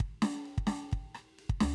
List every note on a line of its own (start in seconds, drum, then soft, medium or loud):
0.00 kick soft
0.00 ride soft
0.22 snare loud
0.22 ride soft
0.46 ride soft
0.58 kick soft
0.67 snare loud
0.67 ride medium
0.92 kick soft
0.92 ride soft
1.15 cross-stick medium
1.15 ride soft
1.25 cross-stick soft
1.39 ride medium
1.49 kick medium
1.61 snare loud
1.61 floor tom loud